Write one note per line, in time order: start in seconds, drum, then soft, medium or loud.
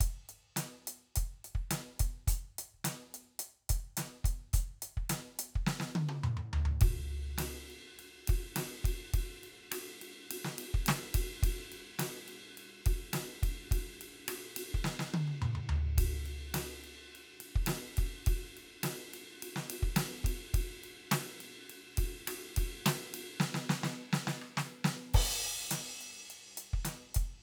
0.01 kick medium
0.01 closed hi-hat loud
0.29 closed hi-hat medium
0.57 snare medium
0.57 closed hi-hat loud
0.88 closed hi-hat loud
1.16 kick medium
1.16 closed hi-hat loud
1.45 open hi-hat medium
1.55 kick soft
1.71 snare loud
1.71 closed hi-hat loud
2.00 kick medium
2.00 closed hi-hat loud
2.28 closed hi-hat loud
2.28 kick medium
2.59 closed hi-hat loud
2.74 kick soft
2.85 snare loud
2.85 closed hi-hat loud
3.15 closed hi-hat medium
3.40 closed hi-hat loud
3.70 kick medium
3.70 closed hi-hat loud
3.97 snare medium
3.97 closed hi-hat loud
4.25 kick medium
4.25 closed hi-hat medium
4.54 closed hi-hat loud
4.54 kick medium
4.83 closed hi-hat loud
4.98 kick soft
5.10 snare loud
5.10 closed hi-hat loud
5.39 closed hi-hat loud
5.56 kick medium
5.67 snare loud
5.80 snare medium
5.96 high tom loud
6.09 high tom medium
6.24 mid tom loud
6.37 mid tom loud
6.53 floor tom loud
6.66 floor tom loud
6.81 kick loud
6.81 ride loud
7.38 snare medium
7.38 ride loud
7.70 ride soft
8.00 ride medium
8.28 kick medium
8.28 ride loud
8.56 snare medium
8.56 ride loud
8.85 kick medium
8.85 ride medium
9.14 kick medium
9.14 ride loud
9.44 ride medium
9.72 cross-stick medium
9.72 ride loud
10.02 ride medium
10.31 ride loud
10.45 snare medium
10.59 ride loud
10.75 kick medium
10.87 snare loud
10.87 ride loud
11.15 kick medium
11.15 ride loud
11.43 kick medium
11.43 ride loud
11.72 ride medium
11.99 snare loud
11.99 ride loud
12.28 ride medium
12.58 ride medium
12.86 kick medium
12.86 ride loud
13.14 snare loud
13.14 ride loud
13.43 kick medium
13.43 ride medium
13.72 kick medium
13.72 ride loud
14.01 ride medium
14.29 cross-stick medium
14.29 ride loud
14.57 ride loud
14.75 kick medium
14.85 snare loud
15.00 snare medium
15.14 high tom loud
15.28 high tom medium
15.42 mid tom loud
15.56 mid tom loud
15.70 floor tom loud
15.98 kick medium
15.98 ride loud
16.26 ride soft
16.55 snare loud
16.55 ride loud
16.84 ride soft
17.16 ride soft
17.41 ride medium
17.56 kick medium
17.67 snare loud
17.67 ride loud
17.98 kick medium
17.98 ride medium
18.27 kick medium
18.27 ride loud
18.57 ride medium
18.84 snare loud
18.84 ride loud
19.14 ride medium
19.43 ride loud
19.56 snare medium
19.70 ride loud
19.83 kick medium
19.97 snare loud
19.97 ride loud
20.25 kick medium
20.25 ride loud
20.54 kick medium
20.54 ride loud
20.84 ride medium
21.12 snare loud
21.12 ride loud
21.41 ride medium
21.70 ride medium
21.98 kick medium
21.98 ride loud
22.28 cross-stick medium
22.28 ride loud
22.57 kick medium
22.57 ride loud
22.86 snare loud
22.86 ride loud
23.15 ride loud
23.40 snare loud
23.55 snare loud
23.70 snare loud
23.84 snare loud
24.13 snare loud
24.28 snare loud
24.42 cross-stick medium
24.58 snare loud
24.85 snare loud
25.14 kick medium
25.14 crash loud
25.44 closed hi-hat medium
25.71 snare medium
25.71 closed hi-hat loud
26.01 closed hi-hat medium
26.30 closed hi-hat medium
26.58 closed hi-hat medium
26.74 kick medium
26.85 snare medium
26.85 closed hi-hat loud
27.15 kick medium
27.15 closed hi-hat loud